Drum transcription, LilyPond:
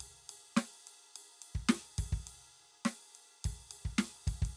\new DrumStaff \drummode { \time 4/4 \tempo 4 = 105 cymr8 cymr8 <sn cymr>8 cymr8 cymr8 cymr16 bd16 <sn cymr>8 <cymr bd>16 bd16 | cymr4 <cymr sn>8 cymr8 <cymr bd>8 cymr16 bd16 <sn cymr>8 <bd cymr>16 <bd cymr>16 | }